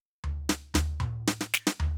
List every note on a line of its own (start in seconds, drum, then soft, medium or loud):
0.24 floor tom loud
0.49 snare loud
0.74 snare loud
0.74 floor tom loud
1.00 mid tom loud
1.28 snare loud
1.41 snare medium
1.54 snare loud
1.67 snare loud
1.80 floor tom loud